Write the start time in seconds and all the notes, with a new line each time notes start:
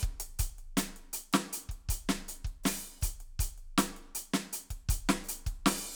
0.01 kick, hi-hat pedal
0.20 closed hi-hat
0.39 closed hi-hat, kick
0.58 closed hi-hat
0.77 closed hi-hat, snare
0.96 closed hi-hat
1.13 closed hi-hat
1.33 snare, closed hi-hat
1.53 closed hi-hat
1.69 kick, closed hi-hat
1.89 closed hi-hat, kick
2.08 snare, closed hi-hat
2.28 closed hi-hat
2.44 kick, closed hi-hat
2.63 open hi-hat, snare, hi-hat pedal
3.01 closed hi-hat, kick, hi-hat pedal
3.20 closed hi-hat
3.39 closed hi-hat, kick
3.58 closed hi-hat
3.78 closed hi-hat, snare
3.96 closed hi-hat
4.15 closed hi-hat
4.33 snare, closed hi-hat
4.53 closed hi-hat
4.70 kick, closed hi-hat
4.89 open hi-hat, kick
5.09 snare
5.24 hi-hat pedal
5.28 closed hi-hat
5.46 kick, closed hi-hat
5.66 open hi-hat, snare